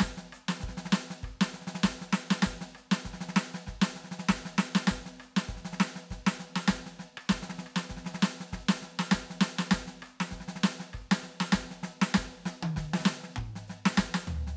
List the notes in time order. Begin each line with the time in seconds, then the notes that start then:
0.01 kick, snare
0.18 snare
0.33 cross-stick, hi-hat pedal
0.49 snare
0.61 kick, snare
0.69 kick, snare
0.78 snare
0.86 snare
0.93 snare, hi-hat pedal
1.11 snare
1.24 kick, cross-stick
1.42 snare
1.54 snare, hi-hat pedal
1.62 snare
1.68 snare
1.76 snare
1.84 kick, snare
2.02 snare
2.14 snare, hi-hat pedal
2.31 snare
2.43 kick, snare
2.62 snare
2.76 cross-stick, hi-hat pedal
2.92 snare
3.06 kick, snare
3.14 snare
3.22 snare
3.30 snare
3.37 snare, hi-hat pedal
3.55 snare
3.68 kick, snare
3.82 snare
3.96 snare, hi-hat pedal
4.05 snare
4.12 snare
4.20 snare
4.30 kick, snare
4.46 snare
4.59 snare, hi-hat pedal
4.76 snare
4.88 kick, snare
5.07 snare
5.21 cross-stick, hi-hat pedal
5.37 snare
5.49 kick, snare
5.58 snare
5.66 snare
5.74 snare
5.81 snare, hi-hat pedal
5.96 snare
6.11 kick, snare
6.27 snare
6.40 snare, hi-hat pedal
6.57 snare
6.69 kick, snare
6.87 snare
7.00 snare, hi-hat pedal
7.18 cross-stick
7.30 kick, snare
7.43 snare
7.50 snare
7.59 snare, hi-hat pedal
7.67 cross-stick
7.77 snare
7.90 kick, snare
7.98 snare
8.05 snare
8.07 snare
8.15 snare
8.23 snare, hi-hat pedal
8.41 snare
8.54 kick, snare
8.69 snare
8.83 snare, hi-hat pedal
9.00 snare
9.12 kick, snare
9.31 snare
9.42 snare, hi-hat pedal
9.59 snare
9.72 kick, snare
9.88 snare
10.03 cross-stick, hi-hat pedal
10.21 snare
10.32 kick, snare
10.41 snare
10.49 snare
10.57 snare
10.64 snare, hi-hat pedal
10.81 snare
10.94 kick, cross-stick
11.12 snare
11.23 snare, hi-hat pedal
11.41 snare
11.53 kick, snare
11.72 snare
11.84 snare, hi-hat pedal
12.02 snare
12.15 kick, snare
12.46 snare, hi-hat pedal
12.64 high tom
12.77 kick, snare
12.83 kick
12.94 snare
13.00 snare
13.06 snare, hi-hat pedal
13.24 snare
13.37 kick, mid tom
13.56 snare
13.68 snare, hi-hat pedal
13.86 snare
13.98 kick, snare
14.15 snare
14.27 floor tom, hi-hat pedal
14.48 snare